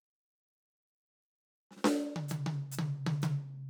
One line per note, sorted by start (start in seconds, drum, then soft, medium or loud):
1.71 snare soft
1.76 snare soft
1.84 snare loud
2.16 high tom medium
2.28 hi-hat pedal medium
2.28 high tom medium
2.46 high tom loud
2.71 hi-hat pedal medium
2.78 high tom loud
3.06 high tom loud
3.22 hi-hat pedal soft
3.22 high tom loud